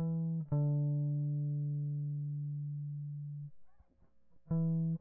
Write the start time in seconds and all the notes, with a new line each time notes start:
0.00 E3
0.53 D3
4.52 E3